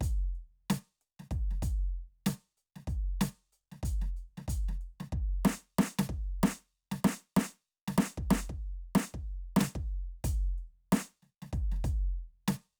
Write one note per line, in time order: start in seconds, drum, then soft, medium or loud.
0.01 closed hi-hat medium
0.01 kick medium
0.35 closed hi-hat soft
0.70 closed hi-hat medium
0.70 snare loud
1.01 closed hi-hat soft
1.20 snare soft
1.31 kick medium
1.31 closed hi-hat soft
1.51 snare soft
1.63 closed hi-hat medium
1.63 kick medium
2.26 closed hi-hat loud
2.26 snare loud
2.57 closed hi-hat soft
2.76 snare soft
2.88 closed hi-hat soft
2.88 kick medium
3.21 closed hi-hat loud
3.21 snare loud
3.53 closed hi-hat soft
3.72 snare soft
3.83 closed hi-hat loud
3.83 kick medium
4.02 snare soft
4.17 closed hi-hat soft
4.38 snare soft
4.48 closed hi-hat loud
4.48 kick medium
4.69 snare soft
4.81 closed hi-hat soft
5.00 snare soft
5.13 kick medium
5.45 snare loud
5.79 snare loud
5.99 snare loud
6.09 kick medium
6.43 snare loud
6.92 snare medium
7.05 snare loud
7.37 snare loud
7.88 snare medium
7.98 snare loud
8.18 kick medium
8.31 snare loud
8.50 kick medium
8.95 snare loud
9.14 kick medium
9.57 snare loud
9.61 snare loud
9.75 kick medium
10.24 closed hi-hat loud
10.24 kick medium
10.58 closed hi-hat soft
10.92 closed hi-hat loud
10.92 snare loud
11.22 snare soft
11.22 closed hi-hat soft
11.42 snare soft
11.53 kick medium
11.53 closed hi-hat soft
11.53 crash soft
11.72 snare soft
11.76 snare soft
11.84 closed hi-hat medium
11.84 kick medium
12.48 snare loud
12.48 closed hi-hat medium